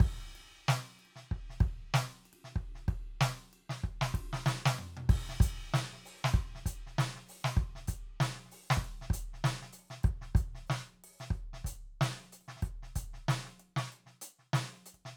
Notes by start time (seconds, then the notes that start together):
0.01 kick, crash
0.21 snare
0.25 snare
0.30 snare
0.36 ride bell
0.69 snare, hi-hat pedal
0.95 hi-hat pedal
1.00 ride bell
1.06 ride
1.17 snare
1.32 kick
1.51 snare
1.61 kick, ride bell
1.95 snare, hi-hat pedal
2.26 ride bell
2.34 ride
2.45 snare
2.57 kick
2.76 snare
2.89 kick, ride bell
3.22 snare, hi-hat pedal
3.54 ride bell
3.70 snare
3.84 kick, ride
4.02 snare
4.15 kick, ride
4.34 kick, snare
4.46 snare, hi-hat pedal
4.66 snare
4.76 hi-hat pedal, mid tom
4.98 high tom
5.10 kick, crash
5.30 snare
5.41 closed hi-hat, kick
5.74 snare, hi-hat pedal
5.94 snare
6.01 hi-hat pedal
6.06 open hi-hat
6.25 snare
6.35 kick, closed hi-hat
6.56 snare
6.67 closed hi-hat, kick
6.87 snare
6.99 snare, hi-hat pedal
7.16 snare
7.27 open hi-hat, hi-hat pedal
7.45 snare
7.58 kick, closed hi-hat
7.76 snare
7.88 closed hi-hat, kick
8.11 snare
8.21 snare, hi-hat pedal
8.37 snare
8.46 snare, hi-hat pedal
8.52 open hi-hat
8.71 snare
8.78 kick
8.85 closed hi-hat
9.02 snare
9.11 closed hi-hat, kick
9.34 snare
9.45 snare, hi-hat pedal
9.63 snare
9.74 closed hi-hat
9.80 open hi-hat
9.91 snare
10.03 kick, snare, open hi-hat
10.07 hi-hat pedal
10.22 snare
10.36 closed hi-hat, kick
10.56 snare
10.67 snare, hi-hat pedal
11.05 open hi-hat
11.21 snare
11.31 kick, hi-hat pedal
11.54 snare
11.65 closed hi-hat, kick
12.02 snare
12.16 snare
12.24 snare
12.33 closed hi-hat
12.42 open hi-hat
12.49 snare
12.57 snare
12.63 kick, open hi-hat
12.68 hi-hat pedal
12.83 snare
12.96 closed hi-hat, kick
13.14 snare
13.19 kick
13.29 snare
13.46 snare
13.60 closed hi-hat
13.77 snare
13.93 open hi-hat
14.07 snare
14.22 closed hi-hat
14.40 snare
14.54 snare
14.74 snare
14.79 snare
14.87 closed hi-hat
14.94 kick, closed hi-hat
15.06 snare